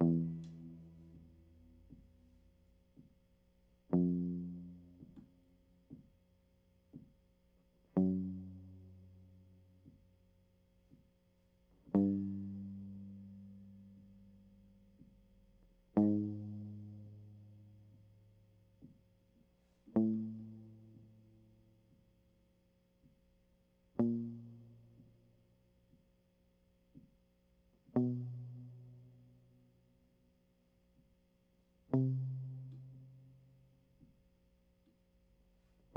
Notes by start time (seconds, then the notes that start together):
0.03 E2
0.16 E2
3.96 F2
7.99 F#2
11.97 G2
16.00 G#2
19.98 A2
24.01 A#2
27.98 B2
31.95 C3